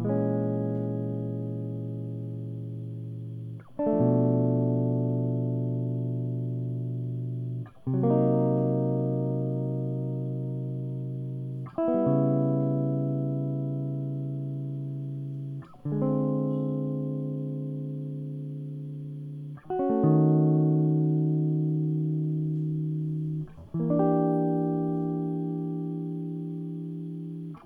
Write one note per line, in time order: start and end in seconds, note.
0.00 3.62 A#2
0.00 3.51 E3
0.06 3.41 G#3
0.10 3.15 C#4
3.80 7.67 D4
3.88 7.19 F3
3.88 6.64 A3
4.02 7.71 B2
7.89 11.72 C3
7.89 11.54 F#3
7.95 11.73 F#3
8.04 11.29 A#3
8.11 11.70 D#4
11.79 15.67 E4
11.89 15.39 G3
11.89 15.39 B3
12.08 15.66 C#3
15.87 19.61 D3
15.93 19.29 G#3
16.03 19.47 C4
16.03 18.08 F4
19.71 23.50 F#4
19.80 23.44 C#4
19.91 22.47 A3
20.05 23.47 D#3
23.76 27.57 E3
23.81 26.48 A#3
23.91 27.57 D4
24.00 27.54 G4